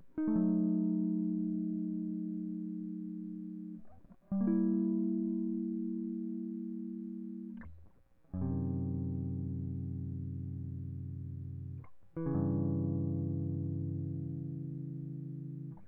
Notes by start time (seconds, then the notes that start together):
0.18 D#4
0.28 A3
0.36 F#3
3.76 D4
4.32 G3
4.41 A#3
4.47 E4
8.35 F#2
8.42 C3
12.17 E3
12.27 C#3
12.36 G2